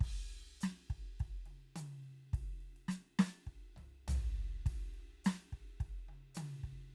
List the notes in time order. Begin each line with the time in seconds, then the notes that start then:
0.01 kick, crash
0.61 snare, hi-hat pedal, ride
0.90 kick, ride
1.20 kick, ride
1.46 high tom, ride
1.76 hi-hat pedal, high tom, ride
2.34 kick, ride
2.61 ride
2.77 ride
2.89 snare, hi-hat pedal, ride
3.19 snare, ride
3.47 kick
3.77 floor tom, ride
4.08 floor tom, hi-hat pedal, ride
4.37 ride
4.66 kick, ride
4.94 ride
5.25 snare, hi-hat pedal, ride
5.53 kick, ride
5.80 kick, ride
6.09 high tom
6.35 hi-hat pedal, high tom, ride
6.62 kick, ride